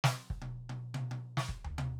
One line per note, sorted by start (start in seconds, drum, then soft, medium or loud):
0.04 snare loud
0.30 kick medium
0.42 high tom loud
0.69 high tom loud
0.94 high tom loud
1.11 high tom loud
1.37 snare loud
1.49 kick medium
1.65 floor tom medium
1.78 high tom loud